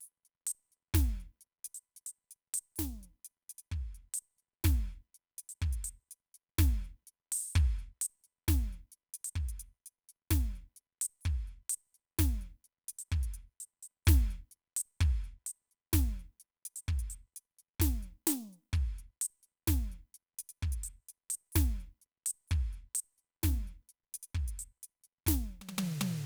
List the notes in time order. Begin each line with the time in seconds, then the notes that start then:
0.01 closed hi-hat, hi-hat pedal
0.25 closed hi-hat
0.47 closed hi-hat
0.72 closed hi-hat
0.94 kick, snare, closed hi-hat
1.20 closed hi-hat
1.41 closed hi-hat
1.65 closed hi-hat
1.75 closed hi-hat
1.97 closed hi-hat
2.07 closed hi-hat
2.31 closed hi-hat
2.54 closed hi-hat
2.76 kick, snare, hi-hat pedal
2.80 closed hi-hat
3.03 closed hi-hat
3.25 closed hi-hat
3.50 closed hi-hat
3.59 closed hi-hat
3.72 kick
3.95 closed hi-hat
4.14 closed hi-hat
4.39 closed hi-hat
4.64 kick, snare, closed hi-hat
4.93 closed hi-hat
5.15 closed hi-hat
5.38 closed hi-hat
5.49 closed hi-hat
5.62 kick
5.73 closed hi-hat
5.85 closed hi-hat
6.11 closed hi-hat
6.35 closed hi-hat
6.59 kick, snare, closed hi-hat
6.85 closed hi-hat
7.07 closed hi-hat
7.32 open hi-hat
7.53 kick, closed hi-hat, hi-hat pedal
7.79 closed hi-hat
8.02 closed hi-hat
8.24 closed hi-hat
8.48 kick, snare, closed hi-hat
8.73 closed hi-hat
8.92 closed hi-hat
9.14 closed hi-hat
9.25 closed hi-hat
9.36 kick
9.49 closed hi-hat
9.60 closed hi-hat
9.86 closed hi-hat
10.09 closed hi-hat
10.31 kick, snare, closed hi-hat
10.56 closed hi-hat
10.77 closed hi-hat
11.02 closed hi-hat
11.21 closed hi-hat, hi-hat pedal
11.26 kick
11.48 closed hi-hat
11.70 closed hi-hat
11.95 closed hi-hat
12.19 kick, snare, closed hi-hat
12.41 closed hi-hat
12.65 closed hi-hat
12.89 closed hi-hat
12.99 closed hi-hat
13.12 kick
13.23 closed hi-hat
13.34 closed hi-hat
13.61 closed hi-hat
13.83 open hi-hat
14.06 kick, snare, closed hi-hat, hi-hat pedal
14.31 closed hi-hat
14.52 closed hi-hat
14.77 closed hi-hat
15.01 kick, closed hi-hat
15.24 closed hi-hat
15.47 closed hi-hat
15.71 closed hi-hat
15.93 kick, snare, closed hi-hat
16.20 closed hi-hat
16.40 closed hi-hat
16.66 closed hi-hat
16.76 closed hi-hat
16.88 kick
16.99 closed hi-hat
17.10 closed hi-hat
17.37 closed hi-hat
17.59 closed hi-hat
17.80 kick, snare, closed hi-hat
18.03 closed hi-hat
18.27 closed hi-hat, snare
18.53 closed hi-hat
18.73 kick, closed hi-hat
18.99 closed hi-hat
19.22 closed hi-hat
19.43 closed hi-hat
19.68 kick, snare, closed hi-hat
19.92 closed hi-hat
20.15 closed hi-hat
20.39 closed hi-hat
20.49 closed hi-hat
20.63 kick
20.72 closed hi-hat
20.84 closed hi-hat
21.09 closed hi-hat
21.30 open hi-hat
21.53 kick, snare, hi-hat pedal
21.57 closed hi-hat
21.80 closed hi-hat
22.02 closed hi-hat
22.26 closed hi-hat
22.48 kick, closed hi-hat, hi-hat pedal
22.73 closed hi-hat
22.95 closed hi-hat
23.18 closed hi-hat
23.44 kick, snare, closed hi-hat
23.48 snare
23.68 closed hi-hat
23.89 closed hi-hat
24.14 closed hi-hat
24.23 closed hi-hat
24.35 kick
24.48 closed hi-hat
24.59 closed hi-hat
24.83 closed hi-hat
25.04 closed hi-hat
25.27 kick, snare, closed hi-hat
25.62 high tom
25.69 high tom
25.79 high tom
26.01 high tom